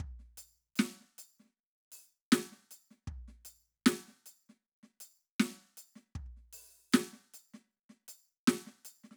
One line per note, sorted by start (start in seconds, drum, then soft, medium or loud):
0.01 kick medium
0.20 snare soft
0.25 snare soft
0.38 percussion medium
0.77 snare loud
0.77 percussion medium
1.02 snare soft
1.10 snare soft
1.19 percussion medium
1.41 snare soft
1.43 snare soft
1.46 snare soft
1.93 percussion medium
2.33 snare loud
2.33 percussion medium
2.53 snare soft
2.63 snare soft
2.72 percussion medium
2.92 snare soft
2.97 snare soft
3.08 kick medium
3.29 snare soft
3.46 percussion medium
3.87 snare loud
3.87 percussion medium
4.09 snare soft
4.27 percussion medium
4.50 snare soft
4.84 snare soft
5.01 percussion medium
5.41 snare loud
5.51 snare soft
5.78 percussion medium
5.97 snare soft
6.16 kick medium
6.16 percussion soft
6.27 kick soft
6.38 snare soft
6.54 percussion medium
6.94 snare loud
6.94 percussion medium
7.14 snare soft
7.21 snare soft
7.35 percussion medium
7.55 snare soft
7.72 percussion soft
7.90 snare soft
8.09 percussion medium
8.49 snare loud
8.68 snare soft
8.86 percussion medium
9.05 snare soft
9.12 snare soft